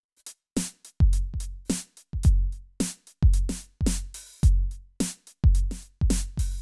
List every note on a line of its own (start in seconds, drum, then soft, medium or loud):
0.17 hi-hat pedal medium
0.26 closed hi-hat loud
0.56 closed hi-hat loud
0.56 snare loud
0.56 hi-hat pedal medium
0.85 closed hi-hat medium
1.00 kick loud
1.13 closed hi-hat loud
1.34 kick medium
1.40 closed hi-hat loud
1.65 hi-hat pedal medium
1.70 closed hi-hat loud
1.70 snare loud
1.97 closed hi-hat medium
2.13 kick medium
2.23 closed hi-hat loud
2.23 kick loud
2.52 closed hi-hat soft
2.80 closed hi-hat loud
2.80 snare loud
3.07 closed hi-hat medium
3.23 kick loud
3.34 closed hi-hat loud
3.49 snare medium
3.61 closed hi-hat medium
3.81 kick medium
3.86 closed hi-hat loud
3.86 snare loud
4.14 open hi-hat loud
4.39 kick loud
4.39 hi-hat pedal medium
4.43 closed hi-hat loud
4.71 closed hi-hat medium
5.00 closed hi-hat loud
5.00 snare loud
5.27 closed hi-hat medium
5.44 kick loud
5.55 closed hi-hat loud
5.71 snare medium
5.82 closed hi-hat medium
6.01 kick loud
6.10 closed hi-hat loud
6.10 snare loud
6.38 open hi-hat loud
6.38 kick medium